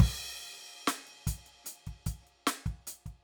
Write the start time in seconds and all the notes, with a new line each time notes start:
0.01 kick, crash
0.40 hi-hat pedal
0.88 closed hi-hat, snare
1.07 closed hi-hat
1.27 closed hi-hat, kick
1.47 closed hi-hat
1.65 closed hi-hat, snare
1.87 kick, closed hi-hat
2.07 closed hi-hat, kick
2.23 snare
2.27 closed hi-hat
2.47 closed hi-hat, snare
2.67 kick, closed hi-hat
2.88 closed hi-hat
3.06 kick, closed hi-hat